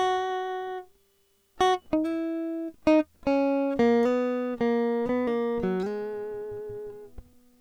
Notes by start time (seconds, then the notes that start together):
0.00 F#4
1.62 F#4
1.95 E4
2.88 D#4
3.28 C#4
3.81 A#3
4.05 B3
4.62 A#3
5.11 B3
5.29 A#3
5.65 F#3
5.82 G#3